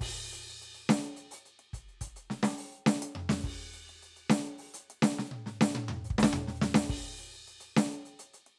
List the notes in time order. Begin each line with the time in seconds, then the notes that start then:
0.01 kick, crash
0.07 kick
0.33 closed hi-hat
0.49 closed hi-hat
0.62 closed hi-hat
0.75 closed hi-hat
0.89 snare
1.04 closed hi-hat
1.17 closed hi-hat
1.31 open hi-hat
1.46 closed hi-hat
1.59 closed hi-hat
1.74 closed hi-hat, kick
1.89 closed hi-hat
2.01 closed hi-hat, kick
2.07 kick
2.16 closed hi-hat
2.25 open hi-hat
2.30 snare
2.43 snare
2.47 hi-hat pedal
2.57 open hi-hat
2.72 open hi-hat
2.76 hi-hat pedal
2.87 snare
3.02 closed hi-hat
3.15 mid tom
3.29 snare
3.41 kick, hi-hat pedal
3.45 crash
3.50 kick
3.62 closed hi-hat
3.74 closed hi-hat
3.89 closed hi-hat
4.03 closed hi-hat
4.16 closed hi-hat
4.30 snare
4.45 closed hi-hat
4.59 open hi-hat
4.71 closed hi-hat, hi-hat pedal
4.90 closed hi-hat
5.02 snare
5.19 snare
5.25 hi-hat pedal
5.32 high tom
5.46 snare
5.61 snare
5.75 high tom
5.89 mid tom
6.05 hi-hat pedal
6.11 kick
6.17 kick, snare
6.21 kick, snare
6.33 mid tom
6.48 snare
6.55 hi-hat pedal
6.62 snare
6.75 snare
6.82 cross-stick, hi-hat pedal
6.89 kick, crash
6.96 kick
7.19 closed hi-hat
7.33 closed hi-hat
7.47 closed hi-hat
7.60 closed hi-hat
7.77 snare
7.92 closed hi-hat
8.06 closed hi-hat
8.19 open hi-hat
8.34 closed hi-hat
8.47 closed hi-hat